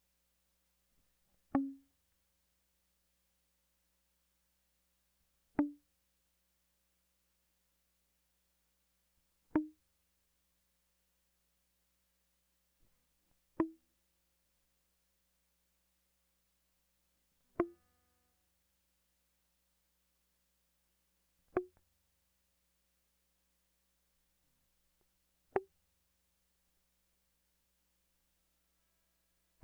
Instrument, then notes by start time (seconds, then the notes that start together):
electric guitar
1.56 C#4
5.60 D4
9.56 D#4
13.61 E4
17.61 F4
21.57 F#4